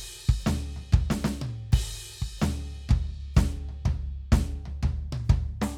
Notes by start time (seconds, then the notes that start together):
0.29 kick
0.40 hi-hat pedal
0.47 snare, floor tom
0.77 floor tom
0.93 kick, floor tom
1.11 snare
1.22 snare, hi-hat pedal
1.42 high tom
1.73 kick, crash
2.22 kick
2.39 snare, hi-hat pedal
2.43 floor tom
2.74 floor tom
2.90 kick, floor tom
3.35 kick, snare, floor tom, hi-hat pedal
3.69 floor tom
3.86 kick, floor tom
4.33 kick, snare, floor tom
4.66 floor tom
4.83 kick, floor tom
5.13 high tom
5.25 hi-hat pedal
5.30 kick, floor tom
5.62 snare